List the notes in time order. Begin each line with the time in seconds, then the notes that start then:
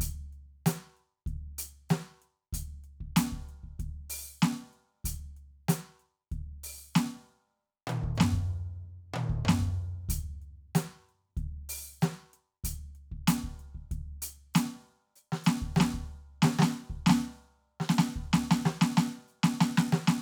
0.01 closed hi-hat, kick
0.34 closed hi-hat
0.68 closed hi-hat, snare
0.98 closed hi-hat
1.28 kick, closed hi-hat
1.60 open hi-hat
1.91 snare, closed hi-hat, hi-hat pedal
2.23 closed hi-hat
2.54 closed hi-hat, kick
2.85 closed hi-hat
3.02 kick
3.18 closed hi-hat, snare
3.34 kick
3.50 closed hi-hat
3.65 kick
3.81 kick, closed hi-hat
4.11 open hi-hat
4.43 snare, hi-hat pedal
4.74 closed hi-hat
5.06 closed hi-hat, kick
5.38 closed hi-hat
5.70 closed hi-hat, snare
6.01 closed hi-hat
6.33 kick, closed hi-hat
6.65 open hi-hat
6.96 closed hi-hat, snare, hi-hat pedal
7.89 hi-hat pedal, mid tom, high tom
8.05 kick
8.17 floor tom, hi-hat pedal
8.22 snare
8.35 kick
9.15 mid tom, high tom
9.31 kick
9.46 snare, floor tom
9.63 kick
10.10 closed hi-hat, kick
10.43 closed hi-hat
10.76 closed hi-hat, snare
11.10 closed hi-hat
11.38 kick, closed hi-hat
11.71 open hi-hat
12.03 snare, closed hi-hat, hi-hat pedal
12.35 closed hi-hat
12.65 closed hi-hat, kick
12.96 closed hi-hat
13.13 kick
13.29 closed hi-hat, snare
13.45 kick
13.61 closed hi-hat
13.76 kick
13.93 kick, closed hi-hat
14.23 open hi-hat
14.56 closed hi-hat, snare, hi-hat pedal
15.17 hi-hat pedal
15.34 snare
15.45 snare, hi-hat pedal
15.63 kick
15.76 snare, hi-hat pedal
15.82 snare
15.95 kick
16.44 snare
16.46 snare
16.60 snare
16.63 snare
16.91 kick
17.08 snare
17.11 snare
17.82 snare
17.91 snare
18.00 snare
18.17 kick
18.35 snare
18.52 snare
18.63 hi-hat pedal
18.67 snare
18.83 snare
18.97 snare, hi-hat pedal
19.29 hi-hat pedal
19.45 snare
19.62 snare
19.79 snare
19.94 snare
20.09 snare